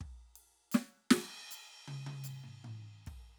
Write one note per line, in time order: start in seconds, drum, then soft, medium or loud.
0.01 kick soft
0.36 ride medium
0.72 snare loud
0.72 percussion medium
1.11 snare loud
1.11 ride medium
1.51 percussion medium
1.88 mid tom medium
2.07 mid tom medium
2.24 floor tom soft
2.24 percussion medium
2.44 floor tom soft
2.65 floor tom medium
3.07 kick soft
3.07 crash soft